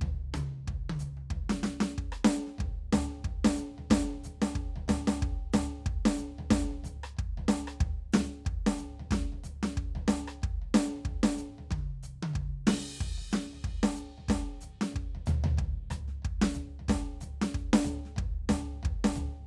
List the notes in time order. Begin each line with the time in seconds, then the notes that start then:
0.01 kick, floor tom
0.34 floor tom, hi-hat pedal, high tom
0.67 kick, floor tom
0.89 high tom
0.99 floor tom, hi-hat pedal
1.17 high tom
1.30 kick, floor tom
1.49 snare
1.63 snare, hi-hat pedal
1.80 snare
1.98 kick
2.12 cross-stick
2.24 snare
2.30 hi-hat pedal
2.47 snare
2.58 kick, floor tom
2.92 snare, floor tom, hi-hat pedal
3.10 snare
3.24 kick, floor tom
3.44 snare
3.56 floor tom, hi-hat pedal
3.78 floor tom
3.90 kick, snare
4.11 floor tom
4.24 kick, floor tom, hi-hat pedal
4.42 snare
4.55 kick, floor tom
4.76 floor tom
4.88 snare, floor tom, hi-hat pedal
5.07 snare
5.21 kick, floor tom
5.53 snare, floor tom, hi-hat pedal
5.86 kick, floor tom
6.05 snare
6.17 floor tom, hi-hat pedal
6.38 floor tom
6.50 kick, snare
6.71 floor tom
6.84 floor tom, hi-hat pedal
7.03 cross-stick
7.17 kick, floor tom
7.37 floor tom
7.48 snare, hi-hat pedal
7.67 cross-stick
7.80 kick, floor tom
8.13 snare, floor tom, hi-hat pedal
8.34 snare
8.45 kick, floor tom
8.66 snare
8.77 floor tom, hi-hat pedal
8.99 floor tom
9.11 kick, snare
9.32 floor tom
9.44 kick, floor tom, hi-hat pedal
9.63 snare
9.76 kick, floor tom
9.95 floor tom
10.08 snare, hi-hat pedal
10.28 cross-stick
10.42 kick, floor tom
10.62 floor tom
10.74 snare, hi-hat pedal
10.96 floor tom
11.05 kick, floor tom
11.23 snare
11.37 floor tom, hi-hat pedal
11.58 floor tom
11.71 kick, high tom
11.90 floor tom
12.03 floor tom, hi-hat pedal
12.23 high tom
12.33 kick, floor tom
12.67 snare, hi-hat pedal, crash
13.00 kick, floor tom
13.18 floor tom
13.31 snare, hi-hat pedal
13.53 floor tom
13.64 kick, floor tom
13.83 snare
13.95 hi-hat pedal
14.18 floor tom
14.28 kick, snare
14.49 floor tom
14.61 floor tom, hi-hat pedal
14.81 snare
14.92 kick, floor tom
15.15 floor tom
15.26 floor tom, hi-hat pedal
15.44 floor tom
15.57 kick, floor tom
15.90 cross-stick, floor tom, hi-hat pedal
16.08 snare
16.22 kick, floor tom
16.41 snare
16.53 floor tom, hi-hat pedal
16.79 floor tom
16.88 kick, snare, floor tom, hi-hat pedal
17.21 kick, floor tom, hi-hat pedal
17.41 snare
17.53 kick, floor tom
17.57 hi-hat pedal
17.73 snare
17.84 floor tom, hi-hat pedal
18.05 snare
18.16 kick, floor tom
18.49 snare, floor tom, hi-hat pedal
18.83 kick, floor tom
19.04 snare
19.15 floor tom, hi-hat pedal